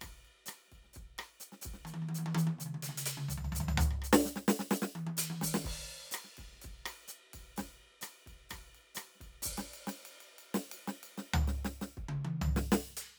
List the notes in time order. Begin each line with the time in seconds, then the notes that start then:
0.01 kick, cross-stick, hi-hat pedal, ride
0.09 kick
0.25 ride
0.46 cross-stick, hi-hat pedal, ride
0.68 snare
0.72 kick, ride
0.84 snare
0.89 snare
0.94 kick, hi-hat pedal, ride
1.19 cross-stick, ride
1.40 hi-hat pedal, ride
1.52 snare
1.62 kick, hi-hat pedal, ride
1.74 snare
1.85 kick, hi-hat pedal, high tom
1.94 high tom
2.02 high tom
2.09 high tom
2.15 hi-hat pedal
2.19 high tom
2.26 high tom
2.35 hi-hat pedal, high tom
2.47 high tom
2.59 hi-hat pedal, mid tom
2.66 mid tom
2.75 mid tom
2.83 closed hi-hat, hi-hat pedal
2.89 mid tom
2.98 closed hi-hat
3.06 closed hi-hat, hi-hat pedal
3.18 mid tom
3.29 floor tom, hi-hat pedal
3.38 floor tom
3.45 floor tom
3.52 floor tom, hi-hat pedal
3.61 floor tom
3.69 floor tom
3.78 hi-hat pedal, floor tom
3.91 cross-stick
4.02 kick, cross-stick, hi-hat pedal
4.13 snare
4.26 snare, hi-hat pedal
4.36 snare
4.48 snare, hi-hat pedal
4.60 snare
4.71 snare, hi-hat pedal
4.82 snare
4.96 kick, high tom
5.07 high tom
5.17 closed hi-hat, hi-hat pedal
5.30 high tom
5.42 kick, snare, hi-hat pedal
5.47 kick
5.55 snare
5.65 kick, snare, crash
5.76 kick, cross-stick
6.12 cross-stick, hi-hat pedal, ride
6.25 snare
6.37 kick, snare, ride
6.44 kick, snare
6.52 snare
6.56 snare
6.62 kick, hi-hat pedal, ride
6.70 kick
6.86 cross-stick, ride
7.08 hi-hat pedal
7.34 kick, ride
7.40 kick
7.57 kick, snare, hi-hat pedal, ride
7.65 kick
8.02 cross-stick, hi-hat pedal, ride
8.27 kick, ride
8.32 kick
8.50 kick, cross-stick, hi-hat pedal, ride
8.58 kick
8.75 ride
8.95 cross-stick, hi-hat pedal, ride
9.16 snare
9.21 kick, ride
9.26 kick
9.43 kick, hi-hat pedal, ride
9.52 kick
9.58 snare, ride
9.74 ride
9.88 snare, ride
10.06 ride
10.21 ride
10.39 ride
10.55 snare
10.72 ride
10.88 snare
11.04 ride
11.18 snare
11.34 floor tom
11.48 snare
11.65 snare
11.82 snare
11.98 kick
12.05 kick
12.09 mid tom
12.25 high tom
12.42 floor tom
12.57 snare
12.72 snare
12.97 closed hi-hat